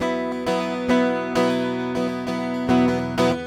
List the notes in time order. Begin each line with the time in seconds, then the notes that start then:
0.02 F#3 B3 E4
0.33 E4
0.48 B2 F#3 B3 E4
0.61 F#3 B3
0.76 E4
0.91 F#3 B3 E4
1.37 B2 F#3 B3 E4
1.51 B3 E4
1.66 E4
1.82 E4
1.97 F#3 B3 E4
2.09 B3 E4
2.29 F#3 B3 E4
2.56 E4
2.69 E2 B2 F#3 B3 E4
2.85 B3 E4
2.90 F#3 B3
3.00 B3 E4
3.20 F#3 B3 E4
3.32 B3